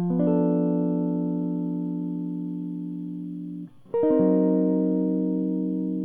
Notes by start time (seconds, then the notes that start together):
0.00 F3
0.11 B3
0.20 D4
0.28 A4
3.95 A#4
4.04 D#4
4.11 C4
4.21 F#3